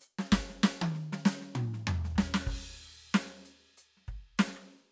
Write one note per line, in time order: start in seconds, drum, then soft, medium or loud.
0.01 hi-hat pedal medium
0.19 snare medium
0.32 kick soft
0.32 snare loud
0.38 kick soft
0.50 snare soft
0.63 snare loud
0.82 high tom loud
0.95 snare soft
1.13 snare medium
1.26 snare loud
1.26 hi-hat pedal loud
1.41 snare soft
1.55 mid tom loud
1.74 snare soft
1.87 floor tom loud
2.05 snare soft
2.16 kick soft
2.16 snare loud
2.34 snare loud
2.47 kick medium
2.47 crash medium
2.54 kick soft
2.57 kick soft
2.79 open hi-hat soft
3.14 snare loud
3.26 snare soft
3.45 closed hi-hat soft
3.78 closed hi-hat soft
3.97 snare soft
4.01 snare soft
4.08 kick soft
4.08 closed hi-hat soft
4.38 closed hi-hat medium
4.38 snare loud
4.38 hi-hat pedal soft
4.47 cross-stick soft
4.47 snare soft
4.57 cross-stick soft